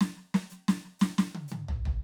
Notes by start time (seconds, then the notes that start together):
0.01 snare
0.17 snare
0.35 snare
0.50 snare, hi-hat pedal
0.69 snare
0.85 snare
1.00 snare, hi-hat pedal
1.19 snare
1.35 high tom
1.49 hi-hat pedal, high tom
1.69 floor tom
1.86 floor tom